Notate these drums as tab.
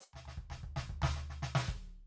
Hi-hat    |p---------------|
Snare     |-oo-o-o-ooooo---|
Floor tom |-oo-o-o-o-------|
Kick      |---o-o-o-----o--|